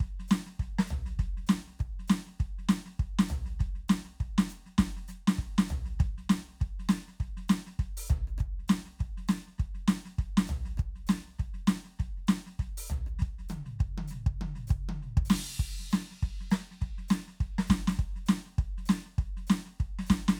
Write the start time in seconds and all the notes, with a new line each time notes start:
0.01 kick, snare
0.20 snare
0.29 snare, hi-hat pedal
0.47 snare
0.60 kick, snare
0.79 snare
0.88 floor tom, hi-hat pedal
1.06 snare
1.20 kick, snare
1.38 snare
1.47 snare, hi-hat pedal
1.68 snare
1.80 kick, cross-stick
2.00 snare
2.08 snare, hi-hat pedal
2.27 snare
2.40 kick, snare
2.59 snare
2.69 snare, hi-hat pedal
2.86 snare
3.00 kick, snare
3.19 snare
3.29 floor tom, hi-hat pedal
3.46 snare
3.60 kick, snare
3.76 snare
3.89 snare, hi-hat pedal
4.05 snare
4.21 kick, snare
4.39 snare
4.50 snare, hi-hat pedal
4.67 snare
4.79 kick, snare
4.97 snare
5.08 snare, hi-hat pedal
5.28 snare
5.39 kick, snare
5.59 snare
5.69 floor tom, hi-hat pedal
5.86 snare
6.00 kick, snare
6.18 snare
6.24 kick
6.30 snare, hi-hat pedal
6.35 kick
6.49 snare
6.61 kick, snare
6.80 snare
6.90 snare, hi-hat pedal
7.08 snare
7.21 kick, snare
7.38 snare
7.49 snare, hi-hat pedal
7.67 snare
7.80 kick, snare
7.98 open hi-hat
8.08 kick, floor tom, hi-hat pedal
8.28 cross-stick
8.39 kick, cross-stick
8.60 snare
8.69 snare, hi-hat pedal
8.86 snare
9.00 kick, snare
9.18 snare
9.29 snare, hi-hat pedal
9.48 snare
9.59 kick, snare
9.75 snare
9.88 snare, hi-hat pedal
10.06 snare
10.19 kick, snare
10.38 snare
10.48 floor tom, hi-hat pedal
10.66 snare
10.78 kick, cross-stick
10.96 snare
11.07 snare, hi-hat pedal
11.28 snare
11.39 kick, snare
11.54 snare
11.68 snare, hi-hat pedal
11.85 snare
12.00 kick, snare
12.18 snare
12.28 snare, hi-hat pedal
12.47 snare
12.60 kick, snare
12.78 open hi-hat
12.89 floor tom, hi-hat pedal
13.07 cross-stick
13.20 kick, snare
13.39 snare
13.49 hi-hat pedal, high tom
13.66 snare
13.80 kick, snare
13.98 high tom
14.08 snare, hi-hat pedal
14.27 kick
14.42 high tom
14.56 snare
14.68 kick, cross-stick, hi-hat pedal
14.89 high tom
15.03 snare
15.18 kick
15.26 hi-hat pedal
15.30 snare, crash
15.60 kick
15.80 snare
15.91 snare, hi-hat pedal
16.12 snare
16.23 kick, snare
16.41 snare
16.51 snare, hi-hat pedal
16.72 snare
16.82 kick, snare
16.99 snare
17.09 snare, hi-hat pedal
17.28 snare
17.41 kick, snare
17.59 snare
17.68 kick, snare, hi-hat pedal
17.88 snare
18.00 kick, snare
18.16 snare
18.27 snare, hi-hat pedal
18.46 snare
18.59 kick, snare
18.78 snare
18.86 snare, hi-hat pedal
19.06 snare
19.19 kick, snare
19.37 snare
19.48 snare, hi-hat pedal
19.66 snare
19.80 kick, snare
19.99 snare
20.07 kick, snare, hi-hat pedal
20.29 snare